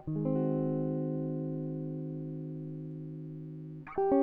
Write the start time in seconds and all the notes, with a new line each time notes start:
0.08 D#3
0.16 G#3
0.26 C4
0.36 F#4
3.98 G4
4.12 C#4